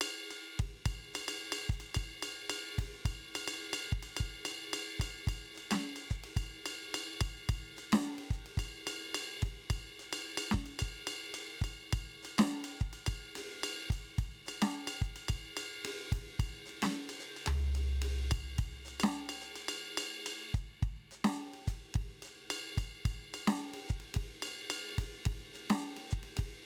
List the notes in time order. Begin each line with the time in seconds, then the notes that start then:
0.02 hi-hat pedal, ride bell
0.31 ride bell
0.59 kick, hi-hat pedal, ride
0.86 kick, ride bell
1.13 hi-hat pedal, ride bell
1.28 ride bell
1.52 ride bell
1.69 kick, hi-hat pedal
1.80 ride bell
1.94 kick, ride bell
2.22 hi-hat pedal, ride bell
2.50 ride bell
2.78 kick, hi-hat pedal, ride
3.05 kick, ride bell
3.10 kick
3.34 hi-hat pedal, ride bell
3.48 ride bell
3.73 ride bell
3.92 kick, hi-hat pedal
4.03 ride bell
4.17 kick, ride bell
4.45 hi-hat pedal, ride bell
4.73 ride bell
4.99 kick, hi-hat pedal, ride bell
5.27 kick, ride bell
5.54 hi-hat pedal, ride bell
5.71 snare, ride bell
5.96 ride bell
6.10 kick, hi-hat pedal
6.24 ride
6.36 kick, ride bell
6.65 hi-hat pedal, ride bell
6.94 ride bell
7.21 kick, hi-hat pedal, ride bell
7.49 kick, ride bell
7.76 hi-hat pedal, ride bell
7.92 kick, snare, closed hi-hat, ride
8.18 ride
8.30 kick, hi-hat pedal
8.46 ride
8.57 kick, ride bell
8.87 hi-hat pedal, ride bell
9.14 ride bell
9.42 kick, hi-hat pedal, ride
9.70 kick, ride bell
9.78 kick
9.99 hi-hat pedal, ride bell
10.13 ride bell
10.37 ride bell
10.51 kick, snare
10.57 hi-hat pedal
10.66 ride bell
10.79 kick, ride bell
11.07 hi-hat pedal, ride bell
11.34 ride bell
11.61 kick, hi-hat pedal, ride bell
11.92 kick, ride bell
12.22 hi-hat pedal, ride bell
12.38 snare, ride bell
12.64 ride bell
12.80 kick, hi-hat pedal
12.93 ride bell
13.06 kick, ride bell
13.35 hi-hat pedal, ride
13.63 ride bell
13.90 kick, hi-hat pedal, ride bell
14.18 kick, ride bell
14.27 kick
14.46 hi-hat pedal, ride bell
14.62 snare, ride bell
14.87 ride bell
15.01 kick, hi-hat pedal
15.16 ride bell
15.28 kick, ride bell
15.35 kick
15.57 hi-hat pedal, ride bell
15.85 ride
16.12 kick, hi-hat pedal, ride
16.17 kick
16.39 kick, ride bell
16.48 kick
16.66 hi-hat pedal, ride
16.82 snare, ride
17.09 ride bell
17.20 hi-hat pedal
17.36 ride bell
17.46 floor tom, ride
17.74 hi-hat pedal, ride
18.02 ride
18.31 kick, hi-hat pedal, ride bell
18.37 kick
18.58 kick, ride bell
18.67 kick
18.85 hi-hat pedal, ride bell
19.00 snare, ride bell
19.29 ride bell
19.41 hi-hat pedal
19.56 ride bell
19.68 ride bell
19.97 hi-hat pedal, ride bell
20.26 ride bell
20.54 kick, hi-hat pedal, ride bell
20.82 kick, ride bell
20.92 kick
21.11 hi-hat pedal, ride
21.24 snare, ride
21.53 ride
21.67 kick, hi-hat pedal, ride
21.94 kick, ride
22.01 kick
22.22 hi-hat pedal, ride bell
22.50 ride bell
22.77 kick, hi-hat pedal, ride bell
23.05 kick, ride bell
23.11 kick
23.33 hi-hat pedal, ride bell
23.47 snare, ride
23.73 ride
23.89 kick, hi-hat pedal
24.00 ride
24.14 kick, closed hi-hat, ride
24.42 hi-hat pedal, ride bell
24.70 ride bell
24.98 kick, hi-hat pedal, ride
25.25 kick, ride
25.32 kick
25.54 hi-hat pedal, ride
25.70 snare, ride
25.97 snare, ride
26.03 snare
26.10 kick, hi-hat pedal
26.23 ride
26.37 kick, ride